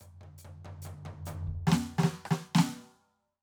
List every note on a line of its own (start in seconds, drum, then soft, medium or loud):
0.01 floor tom soft
0.01 hi-hat pedal soft
0.22 floor tom soft
0.22 high tom soft
0.39 hi-hat pedal medium
0.45 floor tom soft
0.45 high tom soft
0.65 floor tom medium
0.65 high tom medium
0.82 hi-hat pedal medium
0.82 high tom medium
0.87 floor tom medium
1.06 floor tom medium
1.06 high tom medium
1.26 floor tom medium
1.26 hi-hat pedal medium
1.26 high tom medium
1.48 kick soft
1.68 snare loud
1.72 snare loud
1.99 snare loud
1.99 hi-hat pedal soft
2.04 snare loud
2.26 cross-stick medium
2.31 snare loud
2.55 snare loud
2.59 snare loud